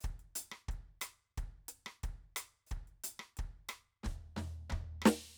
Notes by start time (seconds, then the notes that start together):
0.01 kick, closed hi-hat, hi-hat pedal
0.20 closed hi-hat
0.36 closed hi-hat
0.52 cross-stick
0.69 kick, closed hi-hat
1.02 closed hi-hat, cross-stick
1.38 kick, closed hi-hat
1.69 closed hi-hat
1.87 cross-stick
2.04 kick, closed hi-hat
2.37 closed hi-hat, cross-stick
2.67 hi-hat pedal
2.71 kick, closed hi-hat
2.88 closed hi-hat
3.04 closed hi-hat
3.20 cross-stick
3.37 kick, closed hi-hat
3.69 cross-stick, open hi-hat
4.04 kick, snare, floor tom
4.37 snare, floor tom
4.70 kick, cross-stick, floor tom
5.02 cross-stick, snare